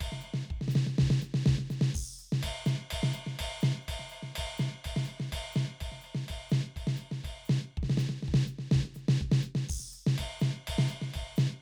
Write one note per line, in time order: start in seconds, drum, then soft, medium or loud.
0.01 kick soft
0.01 ride loud
0.07 kick soft
0.13 snare medium
0.21 hi-hat pedal medium
0.34 snare medium
0.51 kick soft
0.51 snare soft
0.57 kick soft
0.62 snare medium
0.69 snare medium
0.69 hi-hat pedal medium
0.76 snare loud
0.87 snare medium
0.99 kick soft
0.99 snare loud
1.09 kick soft
1.09 snare loud
1.22 snare soft
1.22 hi-hat pedal medium
1.35 snare loud
1.46 kick soft
1.46 snare loud
1.55 kick soft
1.59 snare medium
1.71 snare medium
1.71 hi-hat pedal medium
1.82 snare loud
1.95 kick soft
1.95 crash loud
2.02 kick soft
2.19 hi-hat pedal medium
2.33 snare loud
2.43 kick soft
2.43 ride bell loud
2.50 kick soft
2.66 snare loud
2.66 hi-hat pedal medium
2.91 kick soft
2.91 ride loud
3.04 snare loud
3.14 hi-hat pedal medium
3.14 ride soft
3.27 snare medium
3.39 kick soft
3.39 ride bell loud
3.47 kick soft
3.61 snare loud
3.61 hi-hat pedal medium
3.83 hi-hat pedal soft
3.89 kick soft
3.89 ride bell loud
3.95 kick soft
4.00 snare soft
4.10 hi-hat pedal medium
4.10 ride medium
4.23 snare soft
4.36 kick soft
4.36 ride bell loud
4.44 kick soft
4.58 snare medium
4.58 hi-hat pedal medium
4.85 kick soft
4.85 ride bell loud
4.97 snare medium
5.05 hi-hat pedal medium
5.05 ride soft
5.20 snare medium
5.33 kick soft
5.33 ride bell loud
5.39 kick soft
5.53 snare loud
5.53 hi-hat pedal medium
5.81 kick soft
5.81 ride bell medium
5.88 kick soft
5.92 snare soft
6.02 hi-hat pedal medium
6.02 ride soft
6.15 snare medium
6.29 kick soft
6.29 ride bell medium
6.50 snare loud
6.50 hi-hat pedal medium
6.77 kick soft
6.77 ride medium
6.88 snare medium
6.97 hi-hat pedal medium
6.97 ride soft
7.12 snare medium
7.24 kick soft
7.24 ride medium
7.30 kick soft
7.46 hi-hat pedal medium
7.50 snare loud
7.78 kick soft
7.84 kick soft
7.84 snare medium
7.90 snare medium
7.98 snare loud
7.98 hi-hat pedal medium
8.10 snare medium
8.23 snare medium
8.29 kick soft
8.35 snare loud
8.47 snare soft
8.47 hi-hat pedal medium
8.59 snare medium
8.72 kick soft
8.72 snare loud
8.86 snare soft
8.95 snare soft
8.95 hi-hat pedal medium
9.09 snare loud
9.22 kick soft
9.22 snare soft
9.28 kick soft
9.32 snare loud
9.43 hi-hat pedal medium
9.56 snare medium
9.69 kick soft
9.69 crash loud
9.76 kick soft
9.80 snare soft
9.93 hi-hat pedal medium
10.07 snare loud
10.18 kick soft
10.18 ride bell loud
10.40 snare loud
10.40 hi-hat pedal medium
10.68 kick soft
10.68 ride bell loud
10.75 kick soft
10.79 snare loud
10.89 hi-hat pedal medium
10.89 ride medium
11.02 snare medium
11.10 hi-hat pedal soft
11.14 kick soft
11.14 ride bell medium
11.22 kick soft
11.36 snare loud
11.36 hi-hat pedal medium